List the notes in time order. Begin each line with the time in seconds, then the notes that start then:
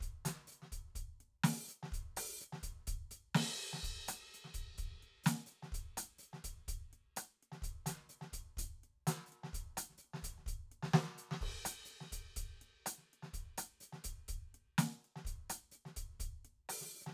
0.01 closed hi-hat, kick
0.26 closed hi-hat, snare
0.48 hi-hat pedal
0.52 closed hi-hat
0.63 snare
0.72 closed hi-hat, kick
0.88 snare
0.96 closed hi-hat, kick
1.21 closed hi-hat
1.44 open hi-hat, snare
1.68 closed hi-hat, hi-hat pedal
1.83 snare
1.93 closed hi-hat, kick
2.17 open hi-hat, cross-stick
2.41 open hi-hat, hi-hat pedal
2.53 snare
2.63 closed hi-hat, kick
2.79 snare
2.88 closed hi-hat, kick
2.94 kick
3.12 closed hi-hat
3.35 snare, crash
3.56 hi-hat pedal
3.61 closed hi-hat
3.74 snare
3.84 closed hi-hat, kick
4.09 closed hi-hat, cross-stick
4.35 closed hi-hat
4.45 snare
4.55 closed hi-hat, kick
4.74 snare
4.78 closed hi-hat, kick
4.85 kick
4.89 snare
4.93 snare
4.98 snare
5.03 closed hi-hat
5.24 closed hi-hat, snare, hi-hat pedal
5.47 hi-hat pedal
5.53 closed hi-hat
5.63 snare
5.73 closed hi-hat, kick, snare
5.98 closed hi-hat, cross-stick
6.19 closed hi-hat, hi-hat pedal
6.34 snare
6.45 closed hi-hat, kick
6.59 snare
6.69 closed hi-hat, kick
6.90 snare, closed hi-hat
7.17 closed hi-hat, cross-stick
7.43 closed hi-hat
7.52 snare
7.62 closed hi-hat, kick, snare
7.87 closed hi-hat, snare
8.10 closed hi-hat, hi-hat pedal
8.22 snare
8.32 closed hi-hat, kick, snare
8.58 closed hi-hat, kick
8.84 closed hi-hat
9.08 closed hi-hat, snare
9.27 hi-hat pedal
9.33 closed hi-hat
9.44 snare
9.54 closed hi-hat, kick
9.78 open hi-hat, cross-stick
9.90 snare
9.98 hi-hat pedal
10.05 closed hi-hat
10.14 snare
10.22 closed hi-hat, kick, snare
10.38 snare
10.44 kick, snare
10.49 closed hi-hat
10.72 closed hi-hat
10.83 snare
10.94 snare
11.08 snare
11.19 closed hi-hat
11.32 snare
11.42 kick, crash
11.66 closed hi-hat, cross-stick
11.86 hi-hat pedal
11.91 closed hi-hat
12.01 snare
12.12 closed hi-hat, kick
12.37 closed hi-hat, kick
12.62 closed hi-hat
12.87 closed hi-hat, cross-stick
12.98 snare
13.14 closed hi-hat
13.23 snare
13.34 closed hi-hat, kick
13.58 closed hi-hat, cross-stick
13.81 closed hi-hat, hi-hat pedal
13.93 snare
14.05 closed hi-hat, kick
14.29 closed hi-hat, kick
14.35 kick
14.53 snare, closed hi-hat
14.79 closed hi-hat, snare
15.05 closed hi-hat
15.16 snare
15.25 closed hi-hat, kick
15.50 closed hi-hat, cross-stick
15.72 closed hi-hat, hi-hat pedal
15.86 snare
15.97 closed hi-hat, kick
16.12 snare
16.20 closed hi-hat, kick
16.45 closed hi-hat
16.70 open hi-hat, cross-stick
16.81 snare
16.95 open hi-hat
17.02 hi-hat pedal
17.07 snare